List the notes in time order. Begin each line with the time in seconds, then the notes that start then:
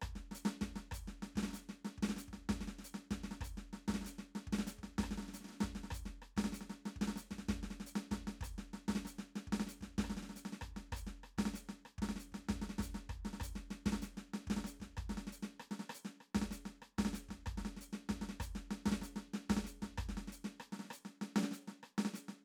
0.02 kick, cross-stick
0.15 snare
0.31 snare, hi-hat pedal
0.45 snare
0.61 kick, snare
0.76 snare
0.91 kick, cross-stick, hi-hat pedal
1.07 snare
1.22 snare
1.35 kick, snare
1.43 snare
1.48 snare
1.53 snare, hi-hat pedal
1.69 snare
1.85 snare
1.98 kick
2.02 snare
2.09 snare
2.16 snare, hi-hat pedal
2.28 kick
2.33 snare
2.49 kick, snare
2.61 snare
2.67 snare
2.75 snare
2.78 snare
2.84 hi-hat pedal
2.94 snare
3.11 kick, snare
3.23 snare
3.31 snare
3.40 kick, cross-stick, hi-hat pedal
3.48 kick
3.57 snare
3.73 snare
3.88 kick, snare
3.94 snare
4.01 snare
4.04 snare, hi-hat pedal
4.18 snare
4.35 snare
4.47 kick
4.52 snare
4.58 snare
4.67 snare, hi-hat pedal
4.78 kick
4.83 snare
4.98 kick, snare
5.03 cross-stick
5.11 snare
5.17 snare
5.22 snare
5.28 snare
5.33 snare, hi-hat pedal
5.40 snare
5.44 snare
5.48 snare
5.53 snare
5.60 kick, snare
5.75 snare
5.83 snare
5.90 kick, cross-stick, hi-hat pedal
6.05 snare
6.22 cross-stick
6.36 kick, snare
6.44 snare
6.52 snare, hi-hat pedal
6.61 snare
6.69 snare
6.85 snare
6.96 kick
7.01 snare
7.07 snare
7.16 snare, hi-hat pedal
7.31 kick, snare
7.38 snare
7.48 kick, snare
7.63 snare
7.70 snare
7.80 snare
7.86 hi-hat pedal
7.95 snare
8.11 kick, snare
8.27 snare
8.41 kick, cross-stick, hi-hat pedal
8.58 snare
8.73 snare
8.88 kick, snare
8.95 snare
9.05 snare, hi-hat pedal
9.18 snare
9.35 snare
9.47 kick
9.52 snare
9.60 snare
9.67 snare, hi-hat pedal
9.81 kick, snare
9.98 kick, snare
10.04 cross-stick
10.10 snare
10.17 snare
10.22 snare
10.29 snare
10.35 snare, hi-hat pedal
10.45 snare
10.52 snare
10.61 kick, cross-stick
10.76 snare
10.92 kick, cross-stick
10.96 hi-hat pedal
11.07 snare
11.23 cross-stick
11.38 kick, snare
11.45 snare
11.54 snare, hi-hat pedal
11.69 snare
11.85 cross-stick
11.98 kick, snare
12.09 snare
12.16 snare, hi-hat pedal
12.32 kick, snare
12.49 kick, snare
12.55 kick
12.61 snare
12.69 snare
12.78 kick, snare
12.82 hi-hat pedal
12.94 snare
13.09 kick, cross-stick
13.25 snare
13.33 snare
13.40 kick, cross-stick, hi-hat pedal
13.55 snare
13.70 snare
13.86 kick, snare
13.91 kick, snare
14.02 snare, hi-hat pedal
14.17 snare
14.33 snare
14.47 kick, snare
14.56 snare
14.64 snare, hi-hat pedal
14.80 kick, snare
14.97 kick, cross-stick
15.09 snare
15.17 snare
15.27 snare
15.32 hi-hat pedal
15.42 snare
15.60 cross-stick
15.71 snare
15.79 snare
15.89 cross-stick
15.94 hi-hat pedal
16.05 snare
16.20 cross-stick
16.35 kick, snare
16.41 snare
16.51 snare, hi-hat pedal
16.65 snare
16.82 cross-stick
16.98 kick, snare
17.05 snare
17.13 snare, hi-hat pedal
17.28 kick, snare
17.46 kick, cross-stick
17.57 snare
17.65 snare
17.76 snare
17.81 hi-hat pedal
17.93 snare
18.09 kick, snare
18.21 snare
18.29 snare
18.40 kick, cross-stick, hi-hat pedal
18.55 snare
18.71 snare
18.86 kick, snare
18.91 snare
19.01 snare, hi-hat pedal
19.16 snare
19.33 snare
19.49 kick, snare
19.57 snare
19.64 snare, hi-hat pedal
19.82 kick, snare
19.98 kick, cross-stick
20.09 snare
20.17 snare
20.27 snare
20.32 hi-hat pedal
20.44 snare
20.60 cross-stick
20.72 snare
20.79 snare
20.84 snare
20.90 cross-stick, hi-hat pedal
21.05 snare
21.21 snare
21.36 snare
21.42 snare
21.51 snare, hi-hat pedal
21.67 snare
21.83 cross-stick
21.98 snare
22.05 snare
22.14 snare, hi-hat pedal
22.28 snare